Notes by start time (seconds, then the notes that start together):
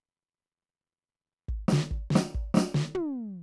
1.48 kick
1.68 snare
1.72 snare
1.91 kick
2.10 snare
2.15 snare
2.34 kick
2.54 snare
2.57 snare
2.74 snare
2.94 floor tom